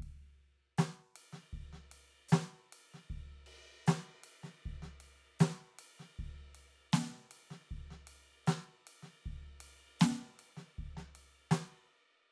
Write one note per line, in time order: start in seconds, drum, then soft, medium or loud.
0.01 kick soft
0.01 ride soft
0.79 snare loud
0.79 hi-hat pedal medium
1.17 ride medium
1.34 snare soft
1.54 kick soft
1.74 snare soft
1.81 snare soft
1.93 ride medium
2.30 snare loud
2.30 hi-hat pedal medium
2.74 ride medium
2.95 snare soft
3.11 kick soft
3.48 ride soft
3.88 snare loud
3.88 hi-hat pedal medium
4.25 ride medium
4.45 snare soft
4.67 kick soft
4.84 snare soft
5.02 ride soft
5.41 snare loud
5.41 hi-hat pedal medium
5.80 ride medium
6.01 snare soft
6.20 kick soft
6.56 ride soft
6.94 snare loud
6.94 hi-hat pedal medium
7.32 ride medium
7.52 snare soft
7.72 kick soft
7.92 snare soft
8.08 ride medium
8.48 snare loud
8.48 hi-hat pedal medium
8.88 ride medium
9.04 snare soft
9.27 kick soft
9.62 ride medium
10.01 snare loud
10.01 hi-hat pedal medium
10.41 ride soft
10.58 snare soft
10.80 kick soft
10.98 snare soft
11.17 ride soft
11.52 snare loud
11.52 hi-hat pedal medium
11.52 ride bell soft